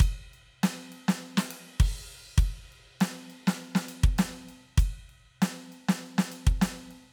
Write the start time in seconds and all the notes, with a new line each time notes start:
0.01 kick, ride bell
0.34 ride bell
0.64 snare, ride bell
0.93 ride
1.09 snare
1.38 snare
1.52 ride
1.81 kick, crash
1.99 crash
2.39 kick, ride
2.73 ride
3.02 snare, ride
3.31 ride bell
3.48 snare
3.76 snare
3.89 ride bell
4.04 kick
4.19 snare, ride bell
4.50 ride bell
4.79 kick, ride bell
5.10 ride
5.43 snare, ride bell
5.73 ride bell
5.90 snare
6.19 snare
6.33 ride bell
6.48 kick
6.62 snare, ride bell
6.92 ride